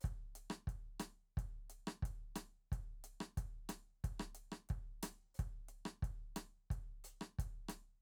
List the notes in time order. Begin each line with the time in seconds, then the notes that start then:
0.01 kick, hi-hat pedal
0.06 closed hi-hat
0.36 closed hi-hat
0.50 cross-stick
0.67 kick, closed hi-hat
1.00 cross-stick, closed hi-hat
1.37 kick, closed hi-hat
1.70 closed hi-hat
1.87 cross-stick
2.03 kick, closed hi-hat
2.36 cross-stick, closed hi-hat
2.72 kick, closed hi-hat
3.04 closed hi-hat
3.21 cross-stick
3.38 kick, closed hi-hat
3.69 cross-stick, closed hi-hat
4.04 kick, closed hi-hat
4.20 cross-stick
4.35 closed hi-hat
4.52 cross-stick
4.69 kick, closed hi-hat
5.03 cross-stick, open hi-hat
5.35 hi-hat pedal
5.39 kick, closed hi-hat
5.69 closed hi-hat
5.86 cross-stick
6.03 kick, closed hi-hat
6.36 cross-stick, closed hi-hat
6.71 kick, closed hi-hat
7.04 closed hi-hat
7.21 cross-stick
7.39 kick, closed hi-hat
7.69 cross-stick, closed hi-hat